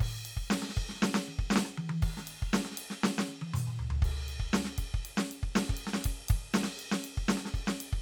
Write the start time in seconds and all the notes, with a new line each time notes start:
0.01 kick, crash
0.26 ride
0.37 kick
0.51 snare, ride
0.63 snare
0.70 snare
0.77 kick, ride
0.90 snare
0.96 snare
1.03 snare
1.15 snare
1.28 high tom
1.39 kick
1.51 snare
1.56 snare
1.66 cross-stick
1.78 high tom
1.90 high tom
2.03 kick, crash
2.18 snare
2.28 ride
2.43 kick
2.54 snare, ride
2.66 snare
2.72 snare
2.78 ride
2.91 snare
3.04 snare
3.19 snare
3.28 high tom
3.42 high tom
3.54 hi-hat pedal, mid tom
3.68 mid tom
3.80 floor tom
3.91 floor tom
4.03 kick, ride
4.29 ride
4.40 kick
4.54 snare, ride
4.65 snare
4.79 kick, ride
4.95 kick
5.06 ride
5.18 snare
5.32 ride
5.44 kick
5.56 snare, ride
5.70 kick
5.78 ride
5.87 snare
5.94 snare
6.00 snare
6.05 kick, ride
6.29 kick, ride
6.54 snare, ride
6.64 snare
6.80 ride
6.92 snare
7.05 ride
7.18 kick
7.29 snare, ride
7.38 snare
7.46 snare
7.54 kick, ride
7.68 snare
7.81 ride
7.93 kick